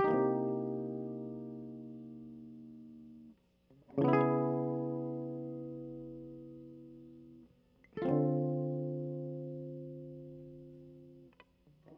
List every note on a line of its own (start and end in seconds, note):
0.00 2.42 G4
0.05 3.31 A#3
0.05 3.35 D#4
0.12 3.31 C3
0.12 0.32 E3
0.32 1.97 E4
3.99 7.43 C#3
3.99 4.08 E3
4.05 7.49 B3
4.05 7.48 E4
4.13 6.05 G#4
7.98 9.46 A4
8.02 11.34 C4
8.02 11.31 F4
8.10 11.29 D3
8.10 8.16 F#3